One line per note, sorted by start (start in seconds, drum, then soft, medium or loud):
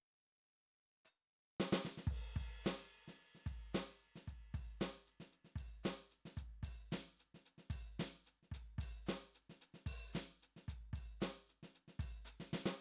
1.05 hi-hat pedal soft
1.60 snare medium
1.72 snare loud
1.85 snare medium
1.97 snare soft
2.07 kick soft
2.07 crash medium
2.36 kick soft
2.36 open hi-hat soft
2.64 snare medium
2.64 closed hi-hat medium
2.64 hi-hat pedal medium
2.84 snare soft
2.93 closed hi-hat soft
3.07 snare soft
3.07 closed hi-hat soft
3.21 closed hi-hat soft
3.35 snare soft
3.46 kick soft
3.46 open hi-hat medium
3.73 closed hi-hat medium
3.73 snare medium
3.73 hi-hat pedal medium
4.02 closed hi-hat soft
4.16 snare soft
4.27 kick soft
4.27 closed hi-hat medium
4.54 kick soft
4.54 open hi-hat medium
4.80 snare medium
4.80 closed hi-hat medium
4.80 hi-hat pedal medium
5.07 closed hi-hat soft
5.20 snare soft
5.32 closed hi-hat soft
5.44 snare soft
5.56 kick soft
5.56 open hi-hat medium
5.83 snare medium
5.83 closed hi-hat medium
5.83 hi-hat pedal medium
6.11 closed hi-hat soft
6.25 snare soft
6.37 kick soft
6.37 closed hi-hat medium
6.63 kick soft
6.63 open hi-hat medium
6.92 snare medium
6.92 closed hi-hat loud
6.92 hi-hat pedal medium
7.19 closed hi-hat medium
7.34 snare soft
7.45 closed hi-hat medium
7.58 snare soft
7.70 kick soft
7.70 open hi-hat medium
7.99 snare medium
7.99 closed hi-hat loud
7.99 hi-hat pedal medium
8.26 closed hi-hat medium
8.43 snare soft
8.51 kick soft
8.51 closed hi-hat loud
8.78 kick soft
8.78 open hi-hat medium
9.06 snare medium
9.06 closed hi-hat loud
9.06 hi-hat pedal medium
9.35 closed hi-hat medium
9.49 snare soft
9.61 closed hi-hat medium
9.74 snare soft
9.86 kick soft
9.86 open hi-hat loud
10.13 snare medium
10.13 closed hi-hat loud
10.13 hi-hat pedal medium
10.42 closed hi-hat medium
10.56 snare soft
10.68 kick soft
10.68 closed hi-hat medium
10.93 kick soft
10.93 open hi-hat medium
11.21 snare medium
11.21 closed hi-hat medium
11.21 hi-hat pedal medium
11.49 closed hi-hat soft
11.63 snare soft
11.75 closed hi-hat medium
11.88 snare soft
11.99 kick soft
11.99 open hi-hat medium
12.25 closed hi-hat loud
12.25 hi-hat pedal medium
12.40 snare soft
12.53 snare medium
12.66 snare medium